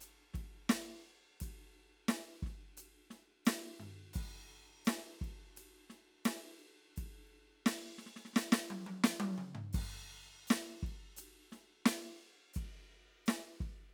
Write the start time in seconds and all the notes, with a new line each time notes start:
0.01 hi-hat pedal, ride
0.34 kick, snare, ride
0.70 snare, hi-hat pedal, ride
1.41 kick, hi-hat pedal, ride
2.09 snare, hi-hat pedal, ride
2.43 kick, snare, ride
2.77 hi-hat pedal, ride
3.11 snare, ride
3.46 snare, hi-hat pedal, ride
3.80 floor tom, ride
4.14 kick, hi-hat pedal, crash
4.85 snare, hi-hat pedal, ride
5.22 kick, ride
5.57 hi-hat pedal, ride
5.90 snare, ride
6.25 snare, hi-hat pedal, ride
6.60 ride
6.97 kick, hi-hat pedal, ride
7.28 ride
7.66 snare, hi-hat pedal, ride
7.99 snare
8.07 snare
8.17 snare
8.25 snare
8.34 snare
8.36 snare, hi-hat pedal
8.53 snare
8.71 high tom
8.87 high tom
9.04 snare, hi-hat pedal
9.20 high tom
9.38 mid tom
9.55 floor tom
9.73 kick, hi-hat pedal, crash
10.48 snare, hi-hat pedal, ride
10.83 kick, ride
11.17 hi-hat pedal, ride
11.52 snare, ride
11.86 snare, hi-hat pedal, ride
12.54 kick, hi-hat pedal, ride, crash
13.26 snare, hi-hat pedal, ride
13.61 kick, ride